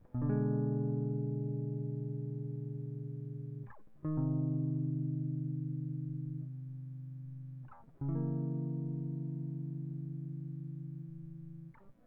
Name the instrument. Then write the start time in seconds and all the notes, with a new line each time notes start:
electric guitar
0.16 B2
0.23 D3
0.30 G#3
4.05 D#3
4.18 C3
8.02 C#3
8.09 E3
8.16 A#3